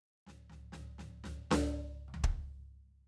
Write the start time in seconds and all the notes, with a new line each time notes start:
0.27 snare, floor tom
0.50 snare, floor tom
0.72 snare, floor tom
0.98 snare, floor tom
1.24 snare, floor tom
1.51 snare, floor tom
2.08 high tom
2.14 floor tom
2.24 kick